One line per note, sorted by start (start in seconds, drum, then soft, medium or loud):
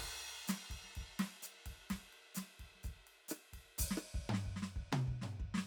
0.48 snare medium
0.48 hi-hat pedal loud
0.48 ride medium
0.70 kick soft
0.70 ride medium
0.84 snare soft
0.89 snare soft
0.93 kick soft
0.93 snare soft
0.93 ride soft
1.20 snare medium
1.20 ride medium
1.43 snare soft
1.43 hi-hat pedal medium
1.51 snare soft
1.54 snare soft
1.66 kick soft
1.66 ride medium
1.90 kick soft
1.90 snare medium
1.90 hi-hat pedal soft
1.90 ride medium
1.96 kick soft
2.13 ride soft
2.35 snare medium
2.35 hi-hat pedal medium
2.35 ride medium
2.60 kick soft
2.60 ride soft
2.75 snare soft
2.80 snare soft
2.83 kick soft
2.83 snare soft
2.83 hi-hat pedal soft
2.83 ride soft
3.07 ride soft
3.29 cross-stick medium
3.29 hi-hat pedal medium
3.29 ride medium
3.53 kick soft
3.53 ride medium
3.78 kick soft
3.78 hi-hat pedal loud
3.87 kick soft
3.91 snare medium
3.98 cross-stick medium
4.14 kick soft
4.21 kick soft
4.30 mid tom medium
4.34 snare medium
4.46 kick soft
4.56 snare medium
4.63 snare medium
4.76 kick soft
4.92 snare medium
4.92 high tom loud
5.07 kick soft
5.22 snare soft
5.22 mid tom medium
5.40 kick soft
5.55 snare medium
5.58 snare medium